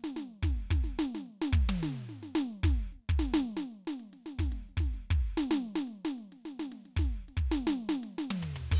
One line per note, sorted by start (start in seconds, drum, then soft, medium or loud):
0.01 snare medium
0.01 hi-hat pedal medium
0.16 snare medium
0.43 kick medium
0.43 snare soft
0.55 snare soft
0.55 hi-hat pedal medium
0.71 kick medium
0.71 snare soft
0.84 snare soft
0.99 snare medium
1.10 hi-hat pedal medium
1.15 snare medium
1.26 snare soft
1.42 snare medium
1.53 kick medium
1.68 hi-hat pedal medium
1.68 high tom loud
1.83 snare medium
2.09 snare soft
2.22 snare soft
2.22 hi-hat pedal medium
2.35 snare loud
2.63 kick medium
2.63 snare medium
2.78 hi-hat pedal medium
2.92 snare soft
3.09 kick medium
3.19 snare medium
3.33 snare loud
3.33 hi-hat pedal medium
3.57 snare medium
3.72 snare soft
3.85 snare medium
3.85 hi-hat pedal medium
4.00 snare soft
4.13 snare soft
4.26 snare soft
4.39 kick medium
4.39 snare medium
4.39 hi-hat pedal medium
4.52 snare soft
4.69 snare soft
4.77 kick medium
4.77 snare soft
4.93 snare soft
4.93 hi-hat pedal medium
5.11 kick medium
5.17 snare soft
5.37 snare medium
5.51 snare loud
5.51 hi-hat pedal medium
5.76 snare medium
5.87 snare soft
6.05 snare medium
6.05 hi-hat pedal medium
6.18 snare soft
6.32 snare soft
6.45 snare soft
6.58 snare medium
6.58 hi-hat pedal medium
6.72 snare soft
6.85 snare soft
6.97 kick medium
6.97 snare medium
7.11 hi-hat pedal medium
7.28 snare soft
7.37 kick medium
7.52 snare medium
7.64 snare loud
7.64 hi-hat pedal medium
7.89 snare medium
8.03 snare soft
8.18 snare medium
8.18 hi-hat pedal medium
8.31 high tom loud
8.43 floor tom medium
8.56 floor tom medium
8.72 kick medium
8.72 hi-hat pedal medium
8.72 crash medium